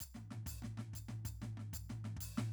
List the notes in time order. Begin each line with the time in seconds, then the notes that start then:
0.00 kick, percussion
0.14 snare, floor tom
0.31 snare, floor tom
0.46 kick, percussion
0.62 snare, floor tom
0.77 snare, floor tom
0.93 kick, percussion
1.08 snare, floor tom
1.25 kick, percussion
1.42 snare, floor tom
1.57 snare, floor tom
1.73 kick, percussion
1.89 snare, floor tom
2.04 snare, floor tom
2.16 kick
2.21 percussion
2.37 snare, floor tom